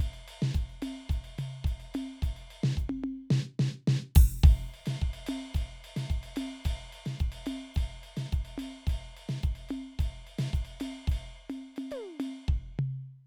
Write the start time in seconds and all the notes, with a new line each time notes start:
0.01 kick, hi-hat pedal, ride
0.16 ride
0.30 ride
0.44 snare
0.56 kick, hi-hat pedal, ride
0.72 ride
0.84 high tom, ride
1.12 kick, hi-hat pedal, ride
1.26 ride
1.41 floor tom, ride
1.67 kick, hi-hat pedal, ride
1.82 ride
1.96 high tom, ride
2.25 kick, hi-hat pedal, ride
2.39 ride
2.53 ride
2.66 snare
2.79 kick, hi-hat pedal
2.92 high tom
3.06 high tom
3.33 snare
3.62 snare
3.90 snare
4.18 open hi-hat, kick
4.46 kick, ride
4.76 ride
4.88 snare, ride
5.02 kick, hi-hat pedal
5.16 ride
5.29 high tom, ride
5.56 kick, hi-hat pedal, ride
5.86 ride
5.99 snare, ride
6.12 kick, hi-hat pedal
6.25 ride
6.38 high tom, ride
6.67 kick, hi-hat pedal, ride
6.95 ride
7.08 snare, ride
7.22 kick, hi-hat pedal
7.34 ride
7.48 high tom, ride
7.77 kick, hi-hat pedal, ride
8.05 ride
8.19 snare, ride
8.34 kick, hi-hat pedal
8.47 ride
8.60 high tom, ride
8.89 kick, hi-hat pedal, ride
9.19 ride
9.31 snare, ride
9.45 kick, hi-hat pedal
9.58 ride
9.71 high tom, ride
10.01 kick, hi-hat pedal, ride
10.29 ride
10.41 snare, ride
10.56 kick, hi-hat pedal
10.67 ride
10.82 high tom, ride
11.10 kick, hi-hat pedal
11.14 ride
11.52 high tom, ride bell
11.78 high tom, ride bell
11.93 high tom, ride bell
12.22 high tom, ride bell
12.50 kick
12.81 floor tom